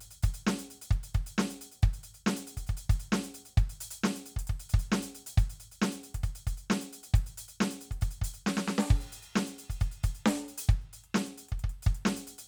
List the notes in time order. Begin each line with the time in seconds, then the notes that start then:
0.01 closed hi-hat
0.23 closed hi-hat, kick
0.34 closed hi-hat
0.47 snare
0.59 closed hi-hat
0.71 closed hi-hat
0.82 closed hi-hat
0.91 kick, closed hi-hat
1.04 closed hi-hat
1.15 kick, closed hi-hat
1.27 closed hi-hat
1.38 snare
1.51 closed hi-hat
1.61 closed hi-hat
1.72 closed hi-hat
1.83 kick, closed hi-hat
1.94 closed hi-hat
2.04 closed hi-hat
2.15 closed hi-hat
2.27 snare
2.37 closed hi-hat
2.47 closed hi-hat
2.57 kick
2.67 closed hi-hat, kick
2.77 closed hi-hat
2.90 closed hi-hat, kick
3.13 snare
3.24 closed hi-hat
3.35 closed hi-hat
3.46 closed hi-hat
3.58 kick, closed hi-hat
3.70 closed hi-hat
3.81 closed hi-hat
3.91 closed hi-hat
4.04 snare
4.16 closed hi-hat
4.37 kick, closed hi-hat
4.48 kick, closed hi-hat
4.60 closed hi-hat
4.70 closed hi-hat
4.74 kick
4.79 closed hi-hat
4.92 snare
5.03 closed hi-hat
5.15 closed hi-hat
5.27 closed hi-hat
5.38 closed hi-hat, kick
5.50 closed hi-hat
5.60 closed hi-hat
5.72 closed hi-hat
5.82 snare
5.92 closed hi-hat
6.04 closed hi-hat
6.15 kick, closed hi-hat
6.24 closed hi-hat, kick
6.36 closed hi-hat
6.47 closed hi-hat, kick
6.58 closed hi-hat
6.70 snare
6.81 closed hi-hat
6.93 closed hi-hat
7.04 closed hi-hat
7.14 kick, closed hi-hat
7.27 closed hi-hat
7.38 closed hi-hat
7.49 closed hi-hat
7.61 snare
7.71 closed hi-hat
7.81 closed hi-hat
7.91 kick, closed hi-hat
8.02 closed hi-hat, kick
8.11 closed hi-hat
8.22 closed hi-hat, kick
8.34 closed hi-hat
8.47 snare
8.57 snare
8.68 snare
8.79 snare
8.90 kick, crash
9.01 closed hi-hat
9.13 closed hi-hat
9.23 closed hi-hat
9.34 kick, snare
9.47 closed hi-hat
9.59 closed hi-hat
9.70 closed hi-hat, kick
9.81 closed hi-hat, kick
9.92 closed hi-hat
10.04 closed hi-hat, kick
10.15 closed hi-hat
10.26 snare
10.38 closed hi-hat
10.49 closed hi-hat
10.58 closed hi-hat
10.69 kick, closed hi-hat
10.81 closed hi-hat
10.93 closed hi-hat
11.04 closed hi-hat
11.15 snare
11.27 closed hi-hat
11.38 closed hi-hat
11.49 kick, closed hi-hat
11.60 closed hi-hat
11.64 kick
11.70 closed hi-hat
11.83 closed hi-hat, kick
11.95 closed hi-hat
12.06 snare
12.17 closed hi-hat
12.27 closed hi-hat
12.39 closed hi-hat